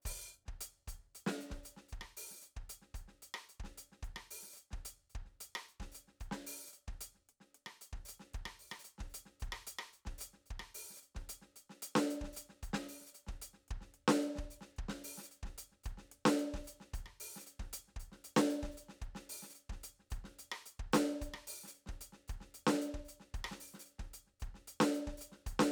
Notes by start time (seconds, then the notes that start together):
0.03 open hi-hat, kick, hi-hat pedal
0.12 kick
0.32 closed hi-hat
0.45 kick, snare
0.61 closed hi-hat
0.87 closed hi-hat, kick
1.15 closed hi-hat
1.26 snare
1.40 closed hi-hat
1.50 kick, snare
1.63 closed hi-hat, hi-hat pedal
1.76 snare
1.89 closed hi-hat, kick
2.01 cross-stick
2.17 open hi-hat
2.30 snare
2.42 closed hi-hat, hi-hat pedal
2.56 kick, snare
2.69 closed hi-hat
2.81 snare
2.94 closed hi-hat, kick
3.08 snare
3.22 closed hi-hat
3.34 cross-stick
3.49 closed hi-hat
3.60 kick
3.64 snare
3.77 closed hi-hat
3.92 snare
4.02 kick, closed hi-hat
4.16 cross-stick
4.31 open hi-hat
4.42 snare
4.53 closed hi-hat, hi-hat pedal
4.71 kick, snare
4.85 closed hi-hat
5.10 closed hi-hat
5.15 kick
5.25 snare
5.40 closed hi-hat
5.55 cross-stick
5.68 closed hi-hat
5.80 kick, snare
5.92 closed hi-hat, hi-hat pedal
6.07 snare
6.20 closed hi-hat, kick
6.31 snare
6.47 open hi-hat
6.67 hi-hat pedal
6.73 closed hi-hat
6.87 kick, snare
7.01 closed hi-hat
7.15 snare
7.29 closed hi-hat
7.40 snare
7.54 closed hi-hat
7.66 cross-stick
7.81 closed hi-hat
7.93 kick, snare
8.05 closed hi-hat, hi-hat pedal
8.19 snare
8.33 kick, closed hi-hat
8.45 cross-stick
8.59 open hi-hat
8.71 cross-stick
8.79 hi-hat pedal
8.84 closed hi-hat
8.98 kick, snare
9.09 hi-hat pedal
9.14 closed hi-hat
9.25 snare
9.40 closed hi-hat, kick
9.48 kick
9.52 cross-stick
9.67 closed hi-hat
9.79 cross-stick
9.93 closed hi-hat
10.05 kick, snare
10.18 closed hi-hat, hi-hat pedal
10.33 snare
10.46 closed hi-hat
10.50 kick
10.59 cross-stick
10.74 open hi-hat
10.90 snare
10.96 hi-hat pedal
11.02 closed hi-hat
11.15 kick, snare
11.21 kick
11.29 closed hi-hat
11.41 snare
11.56 closed hi-hat
11.69 snare
11.82 closed hi-hat
11.95 snare
12.10 closed hi-hat
12.21 kick, snare
12.33 closed hi-hat, hi-hat pedal
12.49 snare
12.63 closed hi-hat, kick
12.73 snare
12.89 open hi-hat
13.01 snare
13.07 hi-hat pedal
13.14 closed hi-hat
13.26 kick, snare
13.42 closed hi-hat
13.53 snare
13.68 kick, closed hi-hat
13.81 snare
13.94 closed hi-hat
14.08 snare
14.22 closed hi-hat
14.35 kick, snare
14.44 kick
14.50 open hi-hat, hi-hat pedal
14.61 snare
14.76 kick, closed hi-hat
14.88 snare
15.04 open hi-hat
15.17 snare
15.23 hi-hat pedal
15.31 closed hi-hat
15.43 kick, snare
15.58 closed hi-hat
15.72 snare
15.83 closed hi-hat, kick
15.97 snare
16.11 closed hi-hat
16.25 snare
16.39 closed hi-hat
16.54 kick, snare
16.64 closed hi-hat, hi-hat pedal
16.80 snare
16.93 closed hi-hat, kick
16.99 kick
17.06 cross-stick
17.20 open hi-hat
17.36 snare
17.41 hi-hat pedal
17.46 closed hi-hat
17.59 kick, snare
17.73 closed hi-hat
17.88 snare
17.96 closed hi-hat, kick
18.12 snare
18.24 closed hi-hat
18.36 snare
18.41 cross-stick
18.50 closed hi-hat
18.63 kick, snare
18.68 kick, hi-hat pedal
18.77 closed hi-hat
18.88 snare
19.01 kick, closed hi-hat
19.15 snare
19.29 open hi-hat
19.42 snare
19.50 hi-hat pedal
19.55 closed hi-hat
19.69 kick, snare
19.83 closed hi-hat
19.99 snare
20.10 closed hi-hat, kick
20.24 snare
20.39 closed hi-hat
20.52 cross-stick
20.66 closed hi-hat
20.79 kick
20.93 closed hi-hat, snare, hi-hat pedal
21.21 closed hi-hat, kick
21.29 kick
21.34 cross-stick
21.47 open hi-hat
21.63 snare
21.68 hi-hat pedal
21.74 closed hi-hat
21.86 kick, snare
22.01 closed hi-hat
22.12 snare
22.28 closed hi-hat, kick
22.40 snare
22.54 closed hi-hat
22.67 snare
22.73 snare
22.81 closed hi-hat
22.94 kick, snare
22.99 kick
23.05 closed hi-hat, hi-hat pedal
23.20 snare
23.34 closed hi-hat, kick
23.44 cross-stick
23.51 snare
23.60 open hi-hat
23.74 snare
23.79 hi-hat pedal
23.85 closed hi-hat
23.98 kick, snare
24.05 kick
24.13 closed hi-hat
24.26 snare
24.40 closed hi-hat, kick
24.54 snare
24.67 closed hi-hat
24.80 snare
24.94 closed hi-hat
25.07 kick, snare
25.17 closed hi-hat, hi-hat pedal
25.32 snare
25.46 closed hi-hat, kick
25.59 snare